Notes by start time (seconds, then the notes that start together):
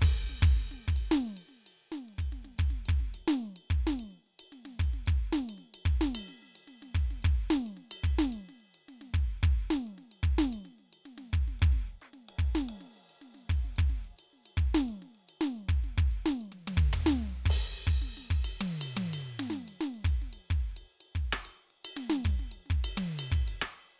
0.01 kick, hi-hat pedal, ride, crash
0.29 snare
0.41 kick, ride bell
0.56 snare, hi-hat pedal
0.71 snare
0.88 kick
0.96 ride bell
1.11 snare, hi-hat pedal
1.37 ride bell
1.49 snare
1.64 hi-hat pedal, ride bell
1.92 snare
2.08 ride
2.18 kick, hi-hat pedal, ride bell
2.32 snare
2.45 snare, ride
2.58 kick, ride bell
2.69 snare, hi-hat pedal
2.86 kick, ride bell
3.00 snare
3.14 ride bell
3.28 snare, hi-hat pedal
3.56 ride bell
3.70 kick
3.84 snare, hi-hat pedal
3.99 ride bell
4.11 snare
4.20 snare
4.26 ride
4.39 hi-hat pedal, ride bell
4.52 snare
4.65 snare, ride
4.79 kick, ride bell
4.92 snare, hi-hat pedal
5.06 kick, ride bell
5.21 ride
5.33 snare
5.48 hi-hat pedal, ride bell
5.58 snare
5.74 ride bell
5.85 kick
6.01 snare, hi-hat pedal
6.15 ride bell
6.28 snare
6.42 snare, ride
6.55 hi-hat pedal, ride bell
6.67 snare
6.82 snare, ride
6.95 kick, ride
7.07 snare, hi-hat pedal
7.22 kick, ride bell
7.36 ride
7.50 snare
7.65 hi-hat pedal, ride bell
7.77 snare
7.91 ride bell
8.04 kick
8.19 snare, hi-hat pedal
8.32 ride bell
8.49 snare
8.60 snare, ride
8.74 hi-hat pedal, ride bell
8.88 snare
9.01 snare, ride
9.14 kick, ride bell
9.27 hi-hat pedal
9.42 kick, ride bell
9.57 ride
9.70 snare
9.83 hi-hat pedal, ride
9.98 snare
10.11 ride bell
10.23 kick
10.38 snare, hi-hat pedal
10.53 ride bell
10.63 snare, hi-hat pedal
10.78 snare, ride
10.93 hi-hat pedal, ride bell
11.05 snare
11.18 snare, ride
11.33 kick, ride
11.44 snare, hi-hat pedal
11.59 kick, ride
11.72 snare
11.87 ride
12.00 snare, percussion, hi-hat pedal, ride
12.13 snare
12.25 hi-hat pedal, ride
12.39 kick
12.54 snare, hi-hat pedal
12.69 ride
12.81 snare
12.95 snare, ride
13.09 hi-hat pedal, ride bell
13.21 snare
13.34 snare, ride
13.49 kick, ride bell
13.60 hi-hat pedal
13.64 snare
13.76 kick, ride bell
13.90 snare
14.05 ride bell
14.17 hi-hat pedal, ride bell
14.33 snare
14.46 ride bell
14.57 kick
14.73 snare, hi-hat pedal
14.88 ride
15.02 snare
15.15 ride
15.27 hi-hat pedal, ride bell
15.41 snare
15.56 ride bell
15.69 kick, ride bell
15.80 snare, hi-hat pedal
15.97 kick, ride
16.11 ride bell
16.26 snare
16.36 hi-hat pedal
16.41 ride bell
16.52 high tom
16.60 hi-hat pedal
16.67 high tom
16.77 kick
16.92 floor tom, hi-hat pedal
17.06 snare
17.46 kick, hi-hat pedal, ride, crash
17.76 ride
17.87 kick, ride bell
18.01 snare, hi-hat pedal
18.17 snare
18.27 kick, hi-hat pedal
18.44 ride bell
18.56 hi-hat pedal
18.61 high tom
18.81 ride bell
18.97 high tom
19.10 hi-hat pedal, ride bell
19.39 snare, ride bell
19.50 snare, ride
19.65 hi-hat pedal, ride bell
19.81 snare
19.94 ride
20.05 kick, ride bell
20.18 snare, hi-hat pedal
20.33 ride bell
20.50 kick
20.62 ride
20.72 hi-hat pedal
20.76 ride bell
21.01 ride bell
21.15 kick
21.27 hi-hat pedal
21.33 cross-stick
21.45 ride bell
21.70 ride
21.83 hi-hat pedal, ride bell
21.97 snare
22.10 snare
22.25 kick, ride bell
22.37 snare, hi-hat pedal
22.51 ride bell
22.66 snare
22.70 kick
22.84 ride bell
22.93 hi-hat pedal
22.97 high tom
23.19 ride bell
23.32 kick
23.48 hi-hat pedal, ride bell
23.62 cross-stick
23.74 hi-hat pedal
23.79 ride